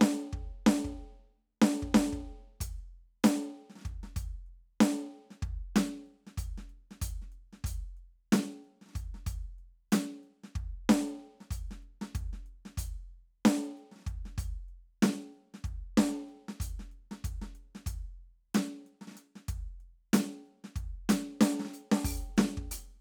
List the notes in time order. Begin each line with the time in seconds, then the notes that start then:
0.01 snare
0.33 kick
0.66 snare
0.84 kick
1.62 snare
1.82 kick
1.94 snare
2.13 kick
2.61 kick, closed hi-hat
3.24 closed hi-hat, snare
3.70 snare
3.76 snare
3.79 snare
3.81 kick, snare
3.86 closed hi-hat
4.03 snare
4.16 closed hi-hat, kick
4.46 closed hi-hat
4.80 closed hi-hat, snare
5.30 snare
5.42 kick, closed hi-hat
5.76 closed hi-hat, snare
6.06 closed hi-hat
6.27 snare
6.38 closed hi-hat, kick
6.58 snare
6.69 closed hi-hat
6.91 snare
7.01 closed hi-hat, kick
7.22 snare
7.32 closed hi-hat
7.53 snare
7.64 closed hi-hat, kick
7.97 closed hi-hat
8.32 closed hi-hat, snare
8.64 closed hi-hat
8.81 snare
8.86 snare
8.89 snare
8.93 closed hi-hat, kick, snare
9.14 snare
9.26 closed hi-hat, kick
9.58 closed hi-hat
9.92 closed hi-hat, snare
10.23 closed hi-hat
10.44 snare
10.55 kick, closed hi-hat
10.89 closed hi-hat, snare
11.18 snare
11.40 snare
11.51 closed hi-hat, kick
11.71 snare
11.82 closed hi-hat
12.01 snare
12.15 kick, closed hi-hat
12.33 snare
12.46 closed hi-hat
12.65 snare
12.77 closed hi-hat, kick
13.45 closed hi-hat, snare
13.75 snare, closed hi-hat
13.91 snare
13.96 snare
13.99 snare
14.07 kick, closed hi-hat
14.25 snare
14.38 closed hi-hat, kick
14.68 closed hi-hat
15.02 closed hi-hat, snare
15.34 closed hi-hat
15.54 snare
15.64 kick, closed hi-hat
15.97 snare, closed hi-hat
16.28 snare, closed hi-hat
16.48 snare
16.60 closed hi-hat, kick
16.79 snare
16.91 closed hi-hat
17.11 snare
17.24 kick, closed hi-hat
17.42 snare
17.55 closed hi-hat
17.75 snare
17.86 kick, closed hi-hat
18.54 snare, closed hi-hat
18.85 snare, closed hi-hat
19.01 snare
19.07 snare
19.15 snare, closed hi-hat
19.36 snare
19.48 kick, closed hi-hat
19.80 closed hi-hat
20.13 closed hi-hat, snare
20.46 closed hi-hat
20.64 snare
20.76 kick, closed hi-hat
21.09 closed hi-hat, snare
21.41 closed hi-hat, snare
21.59 snare
21.65 snare
21.68 snare
21.73 closed hi-hat, snare
21.92 snare
22.05 open hi-hat, kick
22.37 snare, hi-hat pedal
22.57 kick
22.71 closed hi-hat